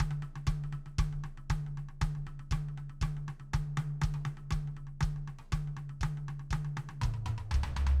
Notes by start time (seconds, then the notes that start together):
0.00 kick, high tom
0.11 high tom
0.22 high tom
0.36 high tom
0.47 kick, high tom
0.64 high tom
0.72 high tom
0.86 high tom
0.98 kick, high tom
1.12 high tom
1.24 high tom
1.37 high tom
1.50 kick, high tom
1.66 high tom
1.77 high tom
1.89 high tom
2.01 kick, high tom
2.15 high tom
2.27 high tom
2.39 high tom
2.51 kick, high tom
2.68 high tom
2.77 high tom
2.89 high tom
3.01 kick, high tom
3.17 high tom
3.28 high tom
3.40 high tom
3.53 kick, high tom
3.77 high tom
4.02 kick, high tom
4.14 high tom
4.25 high tom
4.37 high tom
4.51 kick, high tom
4.67 high tom
4.77 high tom
4.87 high tom
5.01 kick, high tom
5.16 high tom
5.28 high tom
5.39 high tom
5.52 kick, high tom
5.67 high tom
5.77 high tom
5.89 high tom
6.01 kick, high tom
6.17 high tom
6.28 high tom
6.39 high tom
6.51 kick, high tom
6.65 high tom
6.77 high tom
6.89 high tom
7.01 kick, mid tom
7.14 mid tom
7.26 mid tom
7.38 mid tom
7.51 kick, floor tom
7.63 floor tom
7.76 floor tom
7.87 floor tom